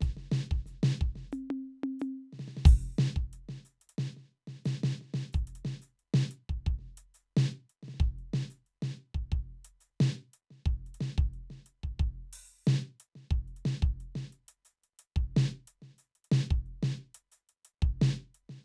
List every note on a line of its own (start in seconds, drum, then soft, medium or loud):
0.01 kick medium
0.01 snare soft
0.01 hi-hat pedal medium
0.17 snare soft
0.32 snare loud
0.51 kick medium
0.51 snare soft
0.66 snare soft
0.66 hi-hat pedal medium
0.83 snare loud
1.01 kick medium
1.01 snare soft
1.16 snare soft
1.32 hi-hat pedal medium
1.32 high tom loud
1.51 high tom loud
1.84 high tom loud
2.00 hi-hat pedal medium
2.00 high tom loud
2.33 snare soft
2.40 snare soft
2.48 snare soft
2.57 snare medium
2.66 open hi-hat medium
2.66 kick loud
2.99 snare loud
2.99 hi-hat pedal soft
3.16 kick medium
3.33 closed hi-hat soft
3.49 snare soft
3.65 hi-hat pedal medium
3.82 closed hi-hat soft
3.89 closed hi-hat soft
3.98 snare medium
4.17 snare soft
4.48 snare soft
4.65 snare medium
4.65 hi-hat pedal medium
4.84 snare loud
5.01 snare soft
5.14 snare medium
5.33 kick medium
5.33 hi-hat pedal medium
5.47 closed hi-hat soft
5.55 closed hi-hat soft
5.65 snare medium
5.82 hi-hat pedal medium
5.99 closed hi-hat soft
6.14 snare loud
6.31 closed hi-hat medium
6.50 kick soft
6.67 kick medium
6.79 snare soft
6.98 closed hi-hat medium
7.14 hi-hat pedal medium
7.37 snare loud
7.70 closed hi-hat soft
7.83 snare soft
7.88 snare soft
7.94 snare soft
8.00 kick medium
8.19 closed hi-hat soft
8.34 snare medium
8.50 hi-hat pedal medium
8.67 open hi-hat soft
8.83 snare medium
9.15 kick soft
9.32 kick medium
9.65 closed hi-hat medium
9.81 hi-hat pedal medium
10.01 snare loud
10.07 snare soft
10.34 closed hi-hat soft
10.51 snare soft
10.66 kick medium
10.87 closed hi-hat soft
10.95 closed hi-hat soft
11.01 snare medium
11.18 kick medium
11.34 closed hi-hat soft
11.50 snare soft
11.66 closed hi-hat soft
11.84 kick soft
12.00 kick medium
12.33 open hi-hat medium
12.66 snare loud
12.66 hi-hat pedal soft
12.74 snare soft
13.00 closed hi-hat medium
13.16 snare soft
13.31 kick medium
13.48 closed hi-hat soft
13.57 closed hi-hat soft
13.66 snare medium
13.83 kick medium
14.00 closed hi-hat soft
14.16 snare medium
14.33 closed hi-hat soft
14.48 closed hi-hat medium
14.65 hi-hat pedal medium
14.84 closed hi-hat soft
14.99 closed hi-hat medium
15.16 kick medium
15.37 snare loud
15.52 snare soft
15.68 closed hi-hat medium
15.82 snare soft
15.98 hi-hat pedal medium
16.15 closed hi-hat soft
16.25 closed hi-hat soft
16.32 snare loud
16.51 kick medium
16.66 closed hi-hat soft
16.83 snare loud
16.92 snare soft
17.15 closed hi-hat medium
17.32 hi-hat pedal medium
17.49 closed hi-hat soft
17.65 closed hi-hat medium
17.82 kick medium
18.02 snare loud
18.09 snare soft
18.35 closed hi-hat soft
18.50 snare soft